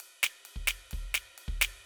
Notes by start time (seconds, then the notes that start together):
0.00 ride
0.23 snare, ride
0.45 ride
0.56 kick
0.67 snare, ride
0.91 kick, ride
1.14 snare, ride
1.38 ride
1.48 kick
1.61 snare, ride